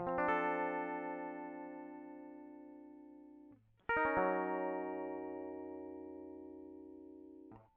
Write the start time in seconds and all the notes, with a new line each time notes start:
0.00 F3
0.07 C4
0.18 D4
0.28 A4
3.89 A#4
3.97 D#4
4.05 C#4
4.18 F#3